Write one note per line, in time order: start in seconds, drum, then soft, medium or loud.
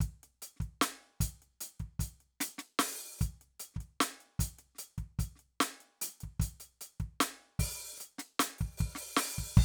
0.01 kick medium
0.01 closed hi-hat medium
0.24 closed hi-hat soft
0.43 closed hi-hat medium
0.57 kick medium
0.57 snare soft
0.62 closed hi-hat soft
0.82 closed hi-hat loud
0.82 snare loud
1.21 closed hi-hat loud
1.21 kick medium
1.43 closed hi-hat soft
1.61 closed hi-hat loud
1.80 kick soft
1.80 snare soft
1.80 closed hi-hat soft
2.00 closed hi-hat medium
2.00 kick medium
2.21 closed hi-hat soft
2.41 closed hi-hat loud
2.41 snare medium
2.59 snare medium
2.59 closed hi-hat medium
2.80 open hi-hat loud
2.80 snare loud
3.19 closed hi-hat medium
3.19 kick medium
3.19 hi-hat pedal medium
3.42 closed hi-hat soft
3.60 closed hi-hat medium
3.75 kick soft
3.75 snare soft
3.81 closed hi-hat soft
4.01 closed hi-hat loud
4.01 snare loud
4.21 closed hi-hat soft
4.40 closed hi-hat loud
4.40 kick medium
4.59 snare soft
4.59 closed hi-hat soft
4.75 closed hi-hat medium
4.75 snare soft
4.98 kick soft
4.98 closed hi-hat soft
5.19 closed hi-hat medium
5.19 kick medium
5.19 snare soft
5.36 snare soft
5.36 closed hi-hat soft
5.61 closed hi-hat medium
5.61 snare loud
5.81 closed hi-hat soft
6.02 closed hi-hat loud
6.21 kick soft
6.21 closed hi-hat medium
6.40 closed hi-hat medium
6.40 kick medium
6.40 snare soft
6.61 closed hi-hat medium
6.81 closed hi-hat medium
7.00 kick medium
7.00 closed hi-hat soft
7.21 closed hi-hat loud
7.21 snare loud
7.60 open hi-hat loud
7.60 kick medium
7.79 open hi-hat soft
7.94 snare soft
7.96 snare soft
7.96 hi-hat pedal medium
8.01 closed hi-hat medium
8.19 snare medium
8.19 closed hi-hat medium
8.40 closed hi-hat loud
8.40 snare loud
8.59 kick medium
8.59 open hi-hat medium
8.78 open hi-hat medium
8.78 kick medium
8.96 open hi-hat medium
8.96 snare medium
9.17 open hi-hat loud
9.17 snare loud
9.39 kick soft
9.58 kick loud
9.58 crash loud